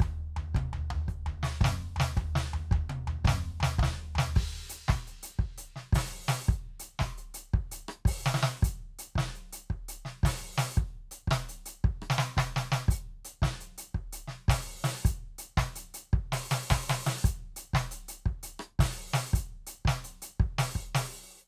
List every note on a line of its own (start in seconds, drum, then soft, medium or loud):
0.01 kick loud
0.01 floor tom loud
0.01 hi-hat pedal medium
0.37 floor tom loud
0.55 kick loud
0.55 high tom loud
0.74 floor tom loud
0.91 floor tom loud
1.09 kick medium
1.09 hi-hat pedal medium
1.27 floor tom loud
1.44 snare loud
1.62 kick loud
1.62 snare loud
1.62 mid tom loud
1.97 snare loud
1.97 floor tom loud
2.16 kick loud
2.16 floor tom loud
2.16 hi-hat pedal medium
2.36 snare loud
2.54 floor tom loud
2.72 kick loud
2.72 floor tom loud
2.90 high tom loud
3.08 floor tom loud
3.25 kick loud
3.25 snare loud
3.25 hi-hat pedal soft
3.25 mid tom loud
3.61 snare loud
3.61 floor tom loud
3.79 kick loud
3.79 hi-hat pedal soft
3.79 floor tom loud
3.84 snare loud
4.16 snare loud
4.16 floor tom loud
4.36 kick loud
4.36 hi-hat pedal soft
4.36 crash loud
4.70 closed hi-hat loud
4.89 kick loud
4.89 snare loud
5.08 closed hi-hat medium
5.24 closed hi-hat loud
5.40 kick loud
5.59 closed hi-hat loud
5.77 snare medium
5.93 open hi-hat loud
5.93 kick loud
5.93 snare loud
6.29 open hi-hat loud
6.29 snare loud
6.47 kick loud
6.47 hi-hat pedal soft
6.53 closed hi-hat medium
6.80 closed hi-hat loud
7.00 kick loud
7.00 snare loud
7.18 closed hi-hat medium
7.35 closed hi-hat loud
7.54 kick loud
7.72 closed hi-hat loud
7.89 cross-stick medium
8.06 open hi-hat loud
8.06 kick loud
8.27 snare loud
8.35 snare loud
8.44 snare loud
8.62 closed hi-hat loud
8.62 kick loud
8.62 hi-hat pedal medium
9.00 closed hi-hat loud
9.16 kick loud
9.16 snare loud
9.36 closed hi-hat medium
9.53 closed hi-hat loud
9.71 kick medium
9.89 closed hi-hat loud
10.06 snare medium
10.24 open hi-hat loud
10.24 kick loud
10.24 snare loud
10.59 open hi-hat loud
10.59 snare loud
10.78 kick loud
10.78 hi-hat pedal medium
11.12 closed hi-hat loud
11.28 kick loud
11.28 cross-stick medium
11.28 snare loud
11.50 closed hi-hat loud
11.67 closed hi-hat loud
11.85 kick loud
12.03 cross-stick medium
12.11 snare loud
12.19 snare loud
12.38 kick loud
12.38 snare loud
12.57 snare loud
12.73 snare loud
12.89 open hi-hat loud
12.89 kick loud
13.26 closed hi-hat loud
13.43 kick loud
13.43 snare loud
13.61 closed hi-hat medium
13.79 closed hi-hat loud
13.95 kick medium
14.14 closed hi-hat loud
14.28 snare medium
14.49 open hi-hat loud
14.49 kick loud
14.49 snare loud
14.85 open hi-hat loud
14.85 snare loud
15.03 closed hi-hat loud
15.03 kick loud
15.03 hi-hat pedal soft
15.39 closed hi-hat loud
15.58 kick loud
15.58 snare loud
15.76 closed hi-hat loud
15.95 closed hi-hat loud
16.14 kick loud
16.33 open hi-hat loud
16.33 snare loud
16.51 open hi-hat loud
16.51 snare loud
16.71 open hi-hat loud
16.71 kick loud
16.71 snare loud
16.89 open hi-hat loud
16.89 snare loud
17.07 open hi-hat loud
17.07 snare loud
17.23 closed hi-hat loud
17.23 kick loud
17.23 hi-hat pedal soft
17.57 closed hi-hat loud
17.74 kick loud
17.74 snare loud
17.92 closed hi-hat loud
18.09 closed hi-hat loud
18.27 kick loud
18.44 closed hi-hat loud
18.60 cross-stick medium
18.80 open hi-hat loud
18.80 kick loud
18.80 snare loud
19.14 open hi-hat loud
19.14 snare loud
19.31 kick loud
19.31 hi-hat pedal soft
19.36 closed hi-hat loud
19.68 closed hi-hat loud
19.86 kick loud
19.86 snare loud
20.05 closed hi-hat loud
20.23 closed hi-hat loud
20.41 kick loud
20.59 open hi-hat loud
20.59 snare loud
20.76 kick medium
20.96 open hi-hat loud
20.96 snare loud
21.41 hi-hat pedal soft